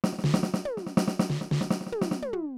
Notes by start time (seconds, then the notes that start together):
0.04 snare
0.13 snare
0.19 snare
0.24 snare
0.34 snare
0.43 snare
0.54 snare
0.65 high tom
0.77 snare
0.87 snare
0.97 snare
1.08 snare
1.19 snare
1.30 snare
1.41 snare
1.51 snare
1.61 snare
1.71 snare
1.87 snare
1.92 mid tom
2.02 snare
2.11 snare
2.22 high tom
2.33 floor tom